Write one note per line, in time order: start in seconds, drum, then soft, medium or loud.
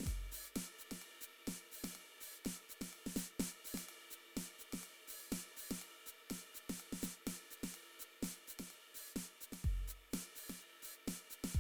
0.01 snare soft
0.01 hi-hat pedal soft
0.04 kick soft
0.04 snare soft
0.04 ride loud
0.08 snare soft
0.32 hi-hat pedal medium
0.54 snare soft
0.54 hi-hat pedal soft
0.54 ride loud
0.79 hi-hat pedal medium
0.92 snare soft
0.92 ride loud
1.02 ride medium
1.21 hi-hat pedal medium
1.46 snare soft
1.46 hi-hat pedal soft
1.46 ride loud
1.72 hi-hat pedal medium
1.84 snare soft
1.84 ride loud
1.95 snare soft
1.95 hi-hat pedal soft
1.95 ride medium
2.21 hi-hat pedal medium
2.44 snare soft
2.44 hi-hat pedal soft
2.44 ride loud
2.69 hi-hat pedal medium
2.81 snare soft
2.81 ride loud
2.92 hi-hat pedal soft
2.92 ride medium
3.07 snare soft
3.16 snare medium
3.16 hi-hat pedal medium
3.40 snare medium
3.40 ride loud
3.65 hi-hat pedal medium
3.75 snare soft
3.75 ride loud
3.87 hi-hat pedal soft
3.87 ride medium
4.11 hi-hat pedal medium
4.33 snare soft
4.33 hi-hat pedal soft
4.37 ride loud
4.59 hi-hat pedal medium
4.73 snare soft
4.73 ride loud
4.82 hi-hat pedal soft
4.82 ride medium
5.08 hi-hat pedal medium
5.32 snare soft
5.32 ride loud
5.57 hi-hat pedal medium
5.71 snare soft
5.71 ride loud
5.80 hi-hat pedal soft
5.80 ride medium
6.06 hi-hat pedal medium
6.30 snare soft
6.30 hi-hat pedal soft
6.30 ride loud
6.55 hi-hat pedal medium
6.70 snare soft
6.70 ride medium
6.78 hi-hat pedal soft
6.78 ride medium
6.93 snare soft
7.02 snare soft
7.02 hi-hat pedal loud
7.25 snare soft
7.25 hi-hat pedal soft
7.25 ride loud
7.51 hi-hat pedal medium
7.64 snare soft
7.64 ride medium
7.74 hi-hat pedal soft
7.74 ride medium
8.00 hi-hat pedal medium
8.23 snare soft
8.23 hi-hat pedal soft
8.23 ride medium
8.48 hi-hat pedal medium
8.59 snare soft
8.59 ride loud
8.71 hi-hat pedal soft
8.71 ride medium
8.95 hi-hat pedal medium
9.16 snare soft
9.16 hi-hat pedal soft
9.16 ride medium
9.41 hi-hat pedal medium
9.53 snare soft
9.53 ride medium
9.63 kick soft
9.63 hi-hat pedal soft
9.63 ride medium
9.88 hi-hat pedal medium
10.11 snare soft
10.11 hi-hat pedal soft
10.11 ride loud
10.36 hi-hat pedal medium
10.50 snare soft
10.50 ride medium
10.59 hi-hat pedal soft
10.83 hi-hat pedal medium
11.06 snare soft
11.06 hi-hat pedal soft
11.06 ride loud
11.30 hi-hat pedal medium
11.44 snare soft
11.44 ride loud
11.54 kick soft
11.54 hi-hat pedal soft
11.54 ride medium